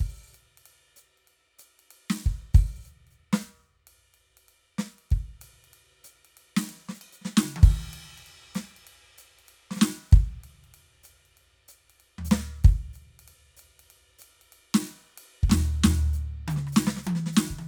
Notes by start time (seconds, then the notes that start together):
0.01 kick, ride
0.35 hi-hat pedal, ride
0.59 ride
0.67 ride
0.97 hi-hat pedal, ride
1.19 ride
1.29 ride
1.60 hi-hat pedal, ride
1.80 ride
1.92 ride
2.10 snare, hi-hat pedal
2.22 ride bell
2.27 kick
2.55 open hi-hat, kick, ride bell
2.86 hi-hat pedal, ride
3.08 hi-hat pedal, ride
3.34 snare
3.42 hi-hat pedal
3.88 ride
4.15 ride
4.38 ride
4.50 ride
4.80 snare, ride
5.00 ride
5.12 kick, ride
5.42 hi-hat pedal, ride
5.65 ride
5.74 ride
6.05 hi-hat pedal, ride
6.26 ride
6.38 ride
6.58 snare
6.63 hi-hat pedal
6.70 ride
6.90 snare
6.96 hi-hat pedal
7.02 ride bell
7.14 hi-hat pedal
7.22 snare
7.26 snare
7.38 snare, hi-hat pedal
7.44 mid tom
7.57 high tom
7.64 kick, crash
7.94 ride
8.19 ride
8.27 ride
8.56 snare, hi-hat pedal, ride
8.78 ride
8.88 ride
9.19 hi-hat pedal, ride
9.40 ride
9.46 hi-hat pedal, ride
9.72 snare, hi-hat pedal
9.78 snare
9.83 snare
10.13 kick, ride
10.20 hi-hat pedal
10.45 ride
10.65 ride
11.05 hi-hat pedal, ride
11.26 ride
11.38 ride
11.69 hi-hat pedal, ride
11.91 ride
12.01 ride
12.19 floor tom
12.26 hi-hat pedal
12.32 snare
12.65 kick, ride
12.94 hi-hat pedal, ride
13.20 ride
13.29 ride
13.58 hi-hat pedal, ride
13.81 ride
13.91 ride
14.20 hi-hat pedal, ride
14.43 ride
14.53 ride
14.75 snare, hi-hat pedal
14.88 ride
15.19 hi-hat pedal, ride
15.44 kick
15.51 snare, floor tom
15.85 snare, floor tom
16.14 hi-hat pedal
16.49 hi-hat pedal, mid tom
16.58 snare
16.68 cross-stick
16.73 snare, hi-hat pedal
16.88 snare
16.98 snare
17.05 hi-hat pedal, high tom
17.16 snare
17.27 snare
17.34 snare, hi-hat pedal
17.48 kick, mid tom
17.60 high tom